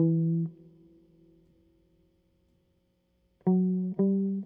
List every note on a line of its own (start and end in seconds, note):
0.00 0.50 E3
3.48 3.96 F#3
4.00 4.43 G3